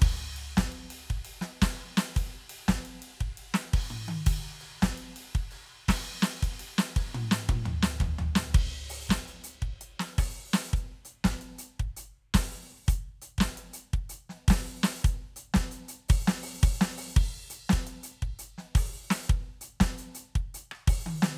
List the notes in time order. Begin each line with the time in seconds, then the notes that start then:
0.01 kick, hi-hat pedal, crash
0.36 crash
0.56 kick, snare, hi-hat pedal
0.72 crash
0.90 crash
1.10 kick
1.25 crash
1.41 snare
1.62 kick, snare, crash
1.97 snare, crash
2.14 kick, hi-hat pedal, crash
2.50 crash
2.68 kick, snare, hi-hat pedal
2.85 crash
3.02 crash
3.19 kick, hi-hat pedal
3.37 crash
3.54 snare
3.74 kick, crash
3.90 mid tom
4.08 high tom
4.26 kick, hi-hat pedal, crash
4.60 crash
4.82 kick, snare, hi-hat pedal
4.98 crash
5.16 crash
5.35 kick
5.51 crash
5.88 kick, snare, crash
6.22 snare, crash
6.42 kick, hi-hat pedal, crash
6.60 crash
6.78 snare
6.96 kick, crash
7.15 mid tom
7.31 snare
7.49 kick, mid tom
7.66 floor tom
7.83 snare
8.00 kick, floor tom
8.19 kick, floor tom
8.35 snare
8.54 kick, ride
8.89 open hi-hat
9.07 kick, snare, hi-hat pedal
9.28 closed hi-hat
9.44 closed hi-hat
9.62 kick
9.81 closed hi-hat
10.00 snare
10.18 open hi-hat, kick, cross-stick
10.53 open hi-hat, snare
10.70 kick, hi-hat pedal
10.76 closed hi-hat
11.05 closed hi-hat
11.24 kick, snare
11.41 closed hi-hat
11.58 closed hi-hat
11.80 kick
11.97 closed hi-hat
12.34 open hi-hat, kick, snare
12.86 closed hi-hat, kick, hi-hat pedal
13.22 closed hi-hat
13.38 kick, snare
13.57 closed hi-hat
13.73 closed hi-hat
13.93 kick
14.09 closed hi-hat
14.29 snare
14.48 open hi-hat, kick, snare
14.83 open hi-hat, snare
15.01 closed hi-hat, kick, hi-hat pedal
15.36 closed hi-hat
15.54 kick, snare
15.71 closed hi-hat
15.88 closed hi-hat
16.09 open hi-hat, kick
16.28 snare
16.43 open hi-hat
16.62 open hi-hat, kick
16.81 snare
16.97 open hi-hat
17.14 kick, hi-hat pedal, crash
17.50 closed hi-hat
17.69 kick, snare
17.87 closed hi-hat
18.03 closed hi-hat
18.22 kick
18.39 closed hi-hat
18.58 snare
18.75 open hi-hat, kick, cross-stick
19.10 open hi-hat, snare
19.27 kick, hi-hat pedal
19.61 closed hi-hat
19.80 kick, snare
19.98 closed hi-hat
20.15 closed hi-hat
20.35 kick
20.54 closed hi-hat
20.71 cross-stick
20.88 open hi-hat, kick
21.06 high tom
21.22 snare